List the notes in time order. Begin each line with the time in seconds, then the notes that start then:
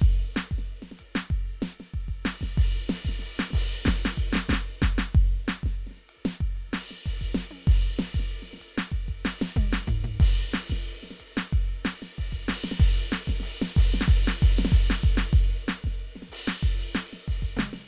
0.01 kick, crash
0.35 snare, hi-hat pedal, ride
0.52 kick
0.59 snare
0.66 hi-hat pedal, ride
0.82 snare
0.92 snare
0.98 kick, hi-hat pedal, ride
1.16 snare
1.30 kick, ride
1.46 ride
1.61 snare, hi-hat pedal, ride
1.80 snare
1.94 kick, ride
2.09 kick, ride
2.24 snare, hi-hat pedal, ride
2.41 kick, snare
2.57 kick, ride
2.89 snare, hi-hat pedal, ride
3.05 kick, snare
3.19 snare, hi-hat pedal, ride
3.39 snare
3.51 kick, snare, ride
3.86 kick, snare, hi-hat pedal
3.88 snare
4.05 snare
4.18 kick
4.33 snare
4.36 snare
4.49 kick, snare
4.53 snare
4.82 kick, snare
4.99 snare
5.15 kick, crash
5.48 snare, hi-hat pedal, ride
5.64 kick, snare
5.77 hi-hat pedal, ride
5.87 snare
5.91 snare
5.97 snare
6.08 hi-hat pedal, ride
6.17 kick
6.26 snare
6.41 kick, ride
6.57 ride
6.69 kick, hi-hat pedal
6.74 snare, ride
6.91 snare
7.05 kick, ride
7.22 kick
7.35 snare, hi-hat pedal, ride
7.51 high tom
7.67 kick, ride
7.99 snare, hi-hat pedal, ride
8.15 kick
8.20 snare
8.31 ride
8.43 snare
8.54 snare
8.58 kick, snare, hi-hat pedal
8.62 ride
8.78 snare
8.92 kick, ride
9.09 kick, ride
9.24 snare, hi-hat pedal, ride
9.42 snare
9.57 kick, mid tom
9.73 snare
9.88 kick, floor tom
10.05 floor tom
10.20 kick, ride
10.52 snare, hi-hat pedal, ride
10.70 kick, snare
10.83 hi-hat pedal
11.03 snare
11.11 snare
11.18 kick, hi-hat pedal, ride
11.37 snare
11.53 kick, ride
11.70 ride
11.84 kick, snare, hi-hat pedal, ride
12.02 snare
12.17 kick, ride
12.32 kick, ride bell
12.48 snare, hi-hat pedal, ride
12.64 snare
12.72 snare
12.79 kick, ride
12.88 hi-hat pedal
13.12 snare, hi-hat pedal
13.28 kick, snare
13.40 snare, hi-hat pedal, ride
13.62 snare
13.75 kick, hi-hat pedal, ride
13.94 snare
14.01 snare
14.08 kick, ride
14.28 snare
14.43 kick, ride
14.59 snare
14.65 snare
14.72 kick, ride
14.90 snare
15.04 kick, snare
15.18 snare
15.33 kick, crash
15.68 snare, hi-hat pedal
15.84 kick, snare
15.97 hi-hat pedal, ride
16.16 snare
16.23 snare
16.29 kick, hi-hat pedal, ride
16.48 snare
16.63 kick, ride
16.79 ride
16.93 kick, snare, hi-hat pedal, ride
17.13 snare
17.27 kick, ride
17.43 kick
17.57 snare, hi-hat pedal, mid tom
17.73 snare